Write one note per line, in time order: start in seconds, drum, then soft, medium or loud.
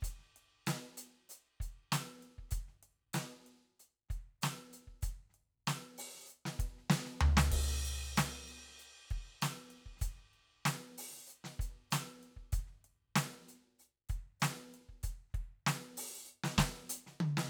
0.01 closed hi-hat medium
0.01 kick soft
0.01 snare soft
0.01 hi-hat pedal soft
0.19 snare soft
0.21 snare soft
0.26 snare soft
0.36 closed hi-hat soft
0.67 closed hi-hat medium
0.67 snare loud
0.98 open hi-hat medium
1.30 closed hi-hat soft
1.30 hi-hat pedal medium
1.61 closed hi-hat soft
1.61 kick soft
1.92 closed hi-hat medium
1.92 snare loud
2.23 closed hi-hat soft
2.39 kick soft
2.49 closed hi-hat medium
2.49 kick soft
2.49 snare soft
2.68 snare soft
2.83 closed hi-hat soft
3.14 closed hi-hat medium
3.14 snare medium
3.47 closed hi-hat soft
3.80 closed hi-hat soft
4.09 closed hi-hat soft
4.09 kick soft
4.09 snare soft
4.42 closed hi-hat medium
4.42 snare medium
4.42 hi-hat pedal soft
4.73 closed hi-hat soft
4.88 kick soft
5.01 closed hi-hat medium
5.01 kick soft
5.01 hi-hat pedal soft
5.30 snare soft
5.34 closed hi-hat soft
5.67 closed hi-hat soft
5.67 snare medium
5.98 open hi-hat medium
6.15 snare soft
6.27 closed hi-hat soft
6.27 hi-hat pedal medium
6.46 snare medium
6.60 kick soft
6.60 closed hi-hat medium
6.65 kick soft
6.68 kick soft
6.78 snare soft
6.90 snare loud
7.05 snare soft
7.21 floor tom loud
7.37 snare loud
7.48 kick soft
7.48 snare soft
7.52 crash medium
7.57 kick soft
7.74 snare soft
7.82 closed hi-hat medium
7.82 snare soft
8.17 closed hi-hat medium
8.17 snare loud
8.30 snare soft
8.47 closed hi-hat soft
8.69 snare soft
8.79 closed hi-hat soft
9.11 kick soft
9.11 closed hi-hat soft
9.42 open hi-hat medium
9.42 snare loud
9.42 hi-hat pedal soft
9.71 closed hi-hat soft
9.86 kick soft
9.97 snare soft
9.97 hi-hat pedal soft
10.02 closed hi-hat medium
10.02 kick soft
10.08 kick soft
10.12 snare soft
10.14 snare soft
10.34 closed hi-hat soft
10.66 closed hi-hat medium
10.66 snare loud
10.98 open hi-hat medium
11.11 snare soft
11.16 snare soft
11.27 closed hi-hat soft
11.27 hi-hat pedal medium
11.44 snare medium
11.60 closed hi-hat medium
11.60 kick soft
11.91 closed hi-hat medium
11.91 snare loud
11.91 hi-hat pedal soft
12.23 closed hi-hat soft
12.37 kick soft
12.53 closed hi-hat medium
12.53 kick medium
12.59 kick soft
12.64 kick soft
12.64 snare soft
12.72 snare soft
12.85 closed hi-hat soft
13.16 closed hi-hat medium
13.16 snare loud
13.49 closed hi-hat soft
13.79 open hi-hat soft
13.79 hi-hat pedal soft
14.09 closed hi-hat soft
14.09 kick soft
14.18 kick soft
14.40 closed hi-hat medium
14.40 snare loud
14.40 hi-hat pedal soft
14.52 snare soft
14.74 closed hi-hat soft
14.89 kick soft
14.97 snare soft
15.00 snare soft
15.03 closed hi-hat medium
15.03 kick soft
15.03 snare soft
15.30 snare soft
15.34 kick soft
15.34 closed hi-hat soft
15.67 closed hi-hat medium
15.67 snare loud
15.80 snare soft
15.98 open hi-hat medium
16.26 hi-hat pedal soft
16.44 snare medium
16.58 kick soft
16.58 snare loud
16.76 snare soft
16.90 closed hi-hat loud
17.07 snare soft
17.21 high tom loud
17.37 snare loud